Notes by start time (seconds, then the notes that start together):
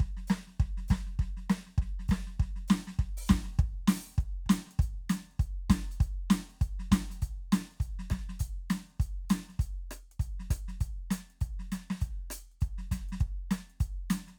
0.01 kick, snare
0.18 snare
0.28 snare, hi-hat pedal
0.48 snare
0.61 kick, snare
0.78 snare
0.89 kick, snare, hi-hat pedal
1.07 snare
1.20 kick, snare
1.38 snare
1.51 snare, hi-hat pedal
1.68 snare
1.79 kick, snare
2.00 snare
2.09 kick, snare, hi-hat pedal
2.28 snare
2.41 kick, snare
2.57 snare
2.69 snare, hi-hat pedal
2.88 snare
3.00 kick, snare
3.18 open hi-hat
3.28 kick, snare, hi-hat pedal
3.44 snare
3.60 kick, closed hi-hat
3.89 open hi-hat, snare
4.15 hi-hat pedal
4.19 kick, closed hi-hat
4.47 kick, snare
4.51 closed hi-hat
4.67 snare
4.72 closed hi-hat
4.80 closed hi-hat, kick
5.10 closed hi-hat, snare
5.32 closed hi-hat
5.40 closed hi-hat, kick
5.71 closed hi-hat, kick, snare
5.92 closed hi-hat
6.01 closed hi-hat, kick
6.31 closed hi-hat, snare
6.51 closed hi-hat
6.62 closed hi-hat, kick
6.80 snare
6.93 closed hi-hat, kick, snare
7.11 closed hi-hat, snare
7.15 snare
7.23 closed hi-hat, kick
7.53 closed hi-hat, snare
7.72 closed hi-hat
7.81 closed hi-hat, kick
8.00 snare
8.11 kick, cross-stick, snare
8.30 snare
8.40 closed hi-hat, kick
8.71 closed hi-hat, snare
8.91 snare, closed hi-hat
9.01 closed hi-hat, kick
9.25 kick
9.31 closed hi-hat, snare
9.50 snare, closed hi-hat
9.55 snare
9.60 closed hi-hat, kick
9.92 closed hi-hat, cross-stick
10.12 closed hi-hat
10.21 closed hi-hat, kick
10.41 snare
10.51 closed hi-hat, kick, cross-stick
10.69 snare, closed hi-hat
10.82 closed hi-hat, kick
11.12 closed hi-hat, snare
11.31 closed hi-hat
11.42 closed hi-hat, kick
11.60 snare
11.73 closed hi-hat, snare
11.91 snare, closed hi-hat
12.02 closed hi-hat, kick
12.31 closed hi-hat, cross-stick
12.53 closed hi-hat
12.62 closed hi-hat, kick
12.79 snare
12.92 closed hi-hat, kick, snare
13.10 snare, closed hi-hat
13.21 kick, closed hi-hat
13.52 closed hi-hat, snare
13.71 closed hi-hat
13.81 closed hi-hat, kick
14.11 closed hi-hat, snare
14.28 snare, closed hi-hat